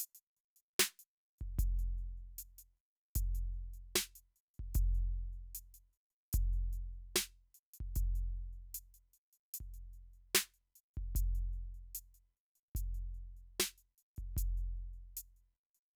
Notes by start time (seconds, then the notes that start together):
0.00 closed hi-hat
0.15 closed hi-hat
0.37 closed hi-hat
0.56 closed hi-hat
0.79 snare
0.99 closed hi-hat
1.38 kick, closed hi-hat
1.59 closed hi-hat, kick
1.79 closed hi-hat
1.98 closed hi-hat
2.17 closed hi-hat
2.38 closed hi-hat
2.58 closed hi-hat
2.77 closed hi-hat
2.95 closed hi-hat
3.15 closed hi-hat, kick
3.35 closed hi-hat
3.53 closed hi-hat
3.74 closed hi-hat
3.96 snare
4.15 closed hi-hat
4.36 closed hi-hat
4.54 closed hi-hat
4.59 kick
4.75 closed hi-hat, kick
4.95 closed hi-hat
5.33 closed hi-hat
5.55 closed hi-hat
5.74 closed hi-hat
5.93 closed hi-hat
6.10 closed hi-hat
6.33 closed hi-hat, kick
6.44 kick
6.53 closed hi-hat
6.73 closed hi-hat
6.93 closed hi-hat
7.16 snare
7.54 closed hi-hat
7.74 closed hi-hat
7.80 kick
7.96 closed hi-hat, kick
8.15 closed hi-hat
8.36 closed hi-hat
8.53 closed hi-hat
8.74 closed hi-hat
8.94 closed hi-hat
9.13 closed hi-hat
9.33 closed hi-hat
9.54 closed hi-hat
9.60 kick
9.74 closed hi-hat
9.93 closed hi-hat
10.13 closed hi-hat
10.35 snare
10.54 closed hi-hat
10.75 closed hi-hat
10.94 kick, closed hi-hat
11.15 closed hi-hat, kick
11.35 closed hi-hat
11.53 closed hi-hat
11.74 closed hi-hat
11.95 closed hi-hat
12.14 closed hi-hat
12.37 closed hi-hat
12.55 closed hi-hat
12.75 closed hi-hat, kick
12.94 closed hi-hat
13.14 closed hi-hat
13.37 closed hi-hat
13.60 snare
13.78 closed hi-hat
13.98 closed hi-hat
14.16 kick, closed hi-hat
14.37 closed hi-hat, kick
14.57 closed hi-hat
14.76 closed hi-hat
14.93 closed hi-hat
15.17 closed hi-hat
15.36 closed hi-hat
15.55 closed hi-hat
15.75 closed hi-hat